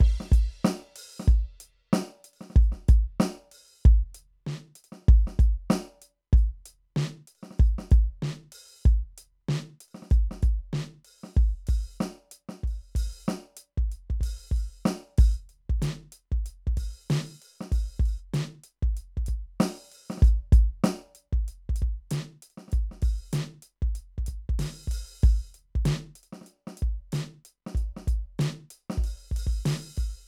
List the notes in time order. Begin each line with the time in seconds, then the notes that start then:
0.01 kick, crash
0.21 snare
0.32 closed hi-hat, kick
0.65 snare
0.96 open hi-hat
1.20 snare
1.28 kick
1.61 closed hi-hat
1.94 snare
2.02 snare
2.25 closed hi-hat
2.34 open hi-hat
2.41 snare
2.51 snare
2.56 kick
2.63 hi-hat pedal
2.73 snare
2.89 closed hi-hat, kick
3.21 snare
3.52 open hi-hat
3.84 kick, hi-hat pedal
4.15 closed hi-hat
4.47 snare
4.76 closed hi-hat
4.85 closed hi-hat
4.93 snare
5.03 snare
5.09 kick, open hi-hat
5.28 snare, hi-hat pedal
5.40 kick, closed hi-hat
5.71 snare
6.02 open hi-hat
6.33 kick, hi-hat pedal
6.66 closed hi-hat
6.97 snare
7.28 open hi-hat
7.36 open hi-hat
7.43 snare
7.51 snare
7.59 open hi-hat, kick
7.66 hi-hat pedal
7.79 snare
7.91 kick, closed hi-hat
8.23 snare
8.53 open hi-hat
8.86 kick, hi-hat pedal
9.18 closed hi-hat
9.49 snare
9.81 open hi-hat
9.89 open hi-hat
9.95 snare
10.03 snare
10.11 open hi-hat, kick, hi-hat pedal
10.32 snare
10.43 kick, closed hi-hat
10.74 snare
11.05 open hi-hat
11.24 snare
11.37 kick
11.68 open hi-hat, kick
11.96 hi-hat pedal
12.01 snare
12.32 closed hi-hat
12.49 snare
12.64 kick
12.68 open hi-hat
12.96 open hi-hat, kick
13.08 kick
13.25 snare, hi-hat pedal
13.57 closed hi-hat
13.78 kick
13.92 closed hi-hat
14.11 kick
14.21 open hi-hat, kick
14.52 kick
14.57 open hi-hat
14.86 snare
15.18 open hi-hat, kick
15.50 closed hi-hat
15.70 kick
15.83 closed hi-hat, snare
16.13 closed hi-hat
16.32 kick
16.46 closed hi-hat
16.68 kick
16.78 kick, open hi-hat
17.11 open hi-hat, snare
17.42 open hi-hat
17.61 snare
17.72 open hi-hat, kick
18.00 kick
18.06 open hi-hat
18.34 closed hi-hat, snare
18.64 closed hi-hat
18.83 kick
18.97 closed hi-hat
19.18 kick
19.27 closed hi-hat, kick
19.61 open hi-hat, snare
19.92 open hi-hat
20.00 open hi-hat
20.11 snare
20.18 snare
20.23 open hi-hat, kick
20.29 hi-hat pedal
20.53 kick, closed hi-hat
20.84 closed hi-hat, snare
21.16 closed hi-hat
21.33 kick
21.49 closed hi-hat
21.70 kick
21.76 closed hi-hat
21.83 kick
22.11 closed hi-hat, snare
22.43 closed hi-hat
22.51 closed hi-hat
22.58 snare
22.69 open hi-hat, snare
22.73 kick
22.92 snare
23.03 open hi-hat, kick
23.31 closed hi-hat, snare, hi-hat pedal
23.63 closed hi-hat
23.83 kick
23.96 closed hi-hat
24.19 kick
24.27 closed hi-hat, kick
24.50 kick
24.60 open hi-hat, snare
24.88 open hi-hat, kick
25.00 kick
25.23 open hi-hat, kick
25.55 closed hi-hat
25.76 kick
25.86 closed hi-hat, snare
26.16 closed hi-hat
26.24 closed hi-hat
26.33 snare
26.42 snare
26.47 closed hi-hat
26.68 snare
26.78 open hi-hat
26.83 kick
27.13 open hi-hat, snare
27.17 hi-hat pedal
27.46 closed hi-hat
27.67 snare
27.75 closed hi-hat, kick
27.97 snare
28.08 closed hi-hat, kick
28.39 closed hi-hat, snare, hi-hat pedal
28.71 open hi-hat
28.91 snare
28.98 kick
29.04 open hi-hat
29.32 kick
29.37 open hi-hat
29.47 kick
29.66 open hi-hat, snare
29.98 open hi-hat, kick